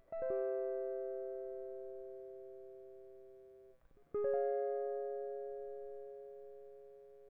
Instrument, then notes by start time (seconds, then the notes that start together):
electric guitar
0.13 E5
0.23 C5
0.31 G4
4.16 G#4
4.26 C#5
4.35 F5